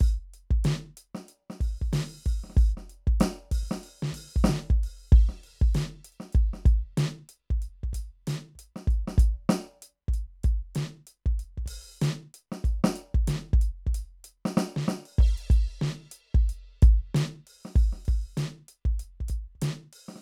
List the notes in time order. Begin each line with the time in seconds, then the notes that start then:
0.01 open hi-hat, kick
0.09 hi-hat pedal
0.34 closed hi-hat
0.51 kick
0.65 closed hi-hat, snare
0.98 closed hi-hat
1.15 snare
1.29 closed hi-hat
1.51 snare
1.61 open hi-hat, kick
1.82 kick
1.94 open hi-hat, snare
2.26 open hi-hat, kick
2.44 snare
2.50 snare
2.57 open hi-hat, kick
2.78 snare
2.90 closed hi-hat
3.08 kick
3.21 closed hi-hat, snare
3.52 open hi-hat, kick
3.64 kick
3.72 snare
3.84 open hi-hat
4.03 snare
4.12 open hi-hat, kick
4.37 kick
4.45 kick, snare
4.49 snare
4.71 kick
4.84 open hi-hat
5.13 kick, crash
5.29 snare
5.44 open hi-hat
5.62 kick
5.75 open hi-hat, snare
5.81 hi-hat pedal
6.05 closed hi-hat
6.13 closed hi-hat
6.21 snare
6.33 closed hi-hat, kick
6.54 snare
6.66 closed hi-hat, kick
6.98 closed hi-hat, snare
7.30 closed hi-hat
7.51 kick
7.63 closed hi-hat
7.84 kick
7.94 open hi-hat, kick
8.28 open hi-hat, snare
8.56 closed hi-hat, kick
8.77 snare
8.88 kick, closed hi-hat
9.08 snare
9.18 closed hi-hat, kick
9.50 closed hi-hat, snare
9.61 snare
9.83 closed hi-hat
10.09 kick
10.14 closed hi-hat
10.44 closed hi-hat, kick
10.76 closed hi-hat, snare
11.08 closed hi-hat
11.26 kick
11.40 closed hi-hat
11.58 kick
11.66 open hi-hat, kick
12.02 open hi-hat, snare, hi-hat pedal
12.35 closed hi-hat
12.53 snare
12.65 kick, open hi-hat
12.85 snare
12.90 snare
12.96 closed hi-hat
13.15 kick
13.28 closed hi-hat, snare
13.36 snare
13.54 kick
13.62 closed hi-hat
13.87 kick
13.95 open hi-hat
14.25 closed hi-hat
14.46 snare
14.58 snare
14.77 snare
14.89 snare
15.06 open hi-hat
15.19 kick, crash
15.38 closed hi-hat
15.51 closed hi-hat, kick
15.82 snare
16.12 closed hi-hat
16.35 kick
16.50 closed hi-hat
16.83 kick, closed hi-hat
17.15 closed hi-hat, snare
17.48 open hi-hat
17.57 open hi-hat
17.66 snare
17.76 open hi-hat, kick
17.93 snare
18.06 open hi-hat, kick
18.38 open hi-hat, snare, hi-hat pedal
18.69 closed hi-hat
18.86 kick
19.00 closed hi-hat
19.21 kick
19.29 closed hi-hat, kick
19.56 kick
19.62 closed hi-hat, snare
19.93 open hi-hat
20.00 open hi-hat
20.09 snare
20.16 snare